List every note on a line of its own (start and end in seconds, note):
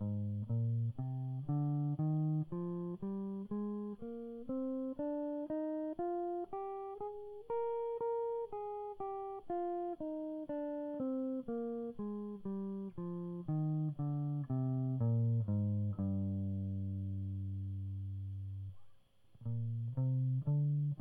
0.03 0.47 G#2
0.52 0.93 A#2
1.00 1.49 C3
1.50 1.98 D3
2.00 2.46 D#3
2.53 2.98 F3
3.03 3.47 G3
3.52 3.97 G#3
4.02 4.46 A#3
4.50 4.95 C4
4.99 5.48 D4
5.50 5.96 D#4
5.99 6.48 F4
6.53 7.00 G4
7.01 7.50 G#4
7.50 8.00 A#4
8.01 8.48 A#4
8.53 8.96 G#4
9.00 9.42 G4
9.50 9.96 F4
10.01 10.47 D#4
10.50 11.03 D4
11.00 11.43 C4
11.49 11.93 A#3
12.00 12.40 G#3
12.46 12.92 G3
12.98 13.44 F3
13.49 13.93 D#3
14.00 14.46 D3
14.51 15.01 C3
15.02 15.44 A#2
15.51 15.95 G#2
16.01 18.74 G2
19.01 19.48 G#2
19.52 19.99 A#2
19.99 20.44 C3
20.48 20.96 D3